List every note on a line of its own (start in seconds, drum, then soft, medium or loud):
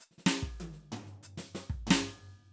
0.00 hi-hat pedal medium
0.11 snare soft
0.18 snare soft
0.26 snare loud
0.42 kick medium
0.60 closed hi-hat soft
0.60 high tom loud
0.72 snare soft
0.82 snare soft
0.92 floor tom loud
1.06 snare soft
1.23 hi-hat pedal loud
1.37 snare medium
1.55 snare medium
1.70 kick medium
1.87 snare loud
1.87 floor tom loud